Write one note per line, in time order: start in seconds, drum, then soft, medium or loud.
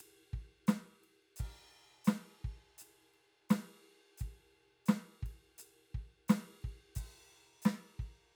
0.01 ride soft
0.34 kick soft
0.68 snare loud
0.68 hi-hat pedal medium
0.68 ride soft
1.04 ride soft
1.37 kick soft
1.37 hi-hat pedal medium
1.37 crash soft
2.05 snare loud
2.05 hi-hat pedal medium
2.09 ride medium
2.45 kick soft
2.79 hi-hat pedal medium
2.79 ride soft
3.14 ride soft
3.50 snare loud
3.50 hi-hat pedal medium
3.50 ride medium
4.18 kick soft
4.18 hi-hat pedal soft
4.18 ride soft
4.86 snare loud
4.86 hi-hat pedal medium
4.86 ride medium
5.23 kick soft
5.23 ride soft
5.59 hi-hat pedal medium
5.59 ride soft
5.94 kick soft
5.94 ride soft
6.29 snare loud
6.29 hi-hat pedal medium
6.29 ride medium
6.62 kick soft
6.62 ride soft
6.96 kick soft
6.96 hi-hat pedal medium
6.96 crash soft
7.62 snare loud
7.62 hi-hat pedal medium
7.62 ride medium
8.00 kick soft
8.00 ride soft